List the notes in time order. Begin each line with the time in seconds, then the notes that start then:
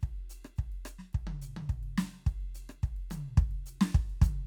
0.01 kick, hi-hat pedal, ride
0.16 ride
0.30 hi-hat pedal, ride bell
0.45 cross-stick
0.56 kick, hi-hat pedal, ride
0.72 ride
0.85 cross-stick, hi-hat pedal, ride bell
0.99 snare
1.13 kick, ride
1.27 high tom
1.42 hi-hat pedal, ride
1.57 high tom
1.69 kick, hi-hat pedal, ride
1.83 ride
1.98 snare, hi-hat pedal, ride bell
2.14 snare
2.27 kick, snare, hi-hat pedal, ride
2.41 ride
2.55 hi-hat pedal, ride bell
2.69 cross-stick
2.83 kick, hi-hat pedal, ride
2.97 ride
3.11 hi-hat pedal, high tom, ride bell
3.37 kick, hi-hat pedal, ride
3.51 ride
3.66 hi-hat pedal, ride
3.81 snare
3.95 kick, ride
4.10 ride
4.22 kick, hi-hat pedal, high tom, ride bell